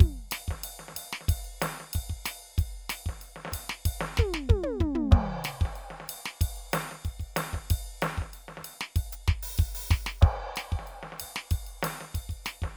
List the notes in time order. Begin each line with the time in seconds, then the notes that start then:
0.01 kick, ride
0.32 snare, hi-hat pedal, ride
0.49 kick, snare
0.64 ride
0.80 snare
0.89 snare
0.95 kick, hi-hat pedal, ride
1.13 snare
1.22 snare
1.29 kick, ride
1.45 ride
1.61 snare, hi-hat pedal, ride
1.81 snare
1.94 kick, ride
2.10 kick
2.25 snare, hi-hat pedal, ride
2.59 kick, ride
2.90 snare, hi-hat pedal, ride
3.07 kick, snare
3.22 ride
3.37 snare
3.46 snare
3.49 snare
3.53 kick, hi-hat pedal, ride
3.70 snare
3.86 kick, ride bell
4.01 snare
4.18 kick, snare, hi-hat pedal, mid tom
4.35 snare
4.49 kick, hi-hat pedal, mid tom
4.64 high tom
4.81 kick, floor tom, hi-hat pedal
4.95 floor tom
5.10 kick, crash
5.13 kick
5.45 snare, hi-hat pedal, ride
5.62 kick
5.66 snare
5.76 ride
5.91 snare
6.01 snare
6.07 kick, hi-hat pedal, ride
6.26 snare
6.42 kick, ride
6.57 ride
6.72 snare, hi-hat pedal, ride
6.92 snare
7.06 kick, ride
7.20 kick, ride
7.36 snare, hi-hat pedal, ride
7.54 kick, snare
7.71 kick, ride
8.03 snare, hi-hat pedal, ride
8.18 kick
8.23 snare
8.34 ride
8.49 snare
8.58 kick, snare
8.65 hi-hat pedal, ride
8.82 snare
8.97 kick, ride
9.13 closed hi-hat
9.28 kick, snare
9.43 open hi-hat
9.59 kick, ride
9.75 open hi-hat
9.91 kick, snare
10.07 snare
10.22 kick, crash
10.57 snare, hi-hat pedal, ride
10.73 kick
10.80 snare
10.87 hi-hat pedal, ride
11.04 snare
11.13 snare
11.19 kick, hi-hat pedal, ride
11.37 snare
11.52 kick, ride
11.67 ride
11.82 snare, hi-hat pedal, ride
12.01 snare
12.15 kick, ride
12.30 kick, ride
12.45 snare, hi-hat pedal, ride
12.63 kick, snare